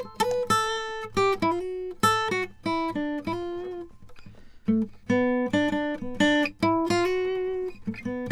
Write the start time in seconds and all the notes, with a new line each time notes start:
0.00 A#4
0.21 B4
0.51 A4
1.18 G4
1.43 E4
1.60 F#4
2.04 A4
2.33 F#4
2.67 E4
2.97 D4
3.28 F4
4.69 A3
5.11 B3
5.55 D4
5.69 D4
5.96 B3
6.21 D4
6.63 E4
6.92 F4
7.06 F#4
8.07 B3